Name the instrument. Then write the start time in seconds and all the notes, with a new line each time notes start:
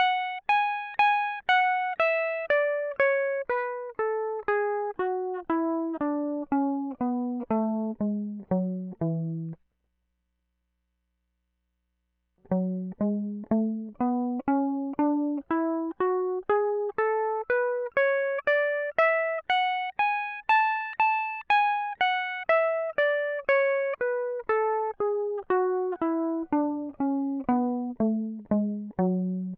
electric guitar
0.00 F#5
0.50 G#5
1.00 G#5
1.49 F#5
2.00 E5
2.51 D5
3.00 C#5
3.50 B4
4.00 A4
4.49 G#4
5.00 F#4
5.50 E4
6.01 D4
6.52 C#4
7.02 B3
7.51 A3
8.02 G#3
8.52 F#3
9.03 E3
12.53 F3 F#3
13.02 G#3
13.52 A3
14.01 B3
14.48 C#4
15.00 D4
15.51 E4
16.01 F#4
16.50 G#4
16.99 A4
17.50 B4
17.97 C#5
18.48 D5
18.99 E5
19.50 F#5
20.00 G#5
20.50 A5
21.00 A5
21.51 G#5
22.01 F#5
22.50 E5
22.99 D5
23.49 C#5
24.01 B4
24.50 A4
25.01 G#4
25.51 F#4
26.02 E4
26.53 D4
27.01 C#4
27.49 B3
28.01 A3
28.52 G#3 A3
29.00 F#3